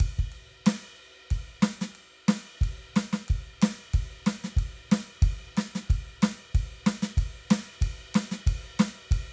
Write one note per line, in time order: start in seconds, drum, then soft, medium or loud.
0.00 kick medium
0.00 ride loud
0.19 kick medium
0.32 ride soft
0.67 snare loud
0.67 ride loud
1.31 kick medium
1.31 ride medium
1.63 snare loud
1.63 ride medium
1.82 snare medium
1.96 ride medium
2.29 snare loud
2.29 ride loud
2.62 kick medium
2.62 ride medium
2.96 snare loud
2.96 ride medium
3.13 snare medium
3.29 kick medium
3.29 ride medium
3.62 snare loud
3.62 ride loud
3.94 kick medium
3.94 ride medium
4.27 snare loud
4.27 ride medium
4.44 snare medium
4.57 kick medium
4.57 ride medium
4.92 snare loud
4.92 ride medium
5.23 kick medium
5.23 ride medium
5.57 snare medium
5.57 ride medium
5.76 snare medium
5.90 kick medium
5.90 ride medium
6.23 snare loud
6.23 ride medium
6.55 kick medium
6.55 ride medium
6.87 snare loud
6.87 ride loud
7.03 snare medium
7.18 kick medium
7.18 ride medium
7.51 snare loud
7.51 ride loud
7.82 kick medium
7.82 ride loud
8.15 snare loud
8.15 ride loud
8.32 snare medium
8.47 kick medium
8.47 ride loud
8.80 snare loud
8.80 ride medium
9.11 kick medium
9.11 ride medium